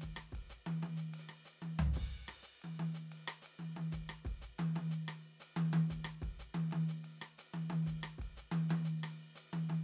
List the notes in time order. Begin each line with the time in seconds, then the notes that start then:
0.01 kick, hi-hat pedal, ride
0.17 cross-stick
0.33 kick, ride
0.50 hi-hat pedal
0.67 high tom, ride
0.83 high tom, ride
0.97 hi-hat pedal
1.14 ride
1.19 hi-hat pedal
1.29 cross-stick
1.45 hi-hat pedal, ride
1.62 high tom
1.79 floor tom
1.94 kick, hi-hat pedal, crash
2.28 cross-stick, ride
2.43 hi-hat pedal
2.62 high tom, ride
2.80 high tom, ride
2.95 hi-hat pedal
3.12 hi-hat pedal, ride
3.28 cross-stick
3.42 hi-hat pedal
3.46 ride
3.59 high tom
3.77 high tom, ride
3.92 kick, hi-hat pedal, ride
4.10 cross-stick
4.25 kick, ride
4.42 hi-hat pedal
4.59 high tom, ride
4.76 high tom, ride
4.91 hi-hat pedal
5.08 cross-stick, ride
5.40 hi-hat pedal, ride
5.57 high tom
5.73 high tom, ride
5.90 kick, hi-hat pedal, ride
6.05 cross-stick
6.22 kick, ride
6.40 hi-hat pedal
6.55 high tom, ride
6.72 high tom, ride
6.89 hi-hat pedal
7.05 ride
7.22 cross-stick
7.39 hi-hat pedal, ride
7.54 high tom
7.60 hi-hat pedal
7.70 high tom, ride
7.87 kick, hi-hat pedal, ride
8.03 cross-stick
8.19 kick, ride
8.37 hi-hat pedal
8.52 high tom, ride
8.70 high tom, ride
8.85 hi-hat pedal
9.04 cross-stick, ride
9.36 hi-hat pedal, ride
9.53 high tom
9.58 hi-hat pedal
9.69 high tom, ride